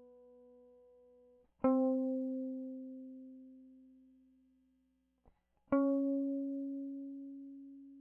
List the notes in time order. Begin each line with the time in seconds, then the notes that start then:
1.65 C4
5.73 C#4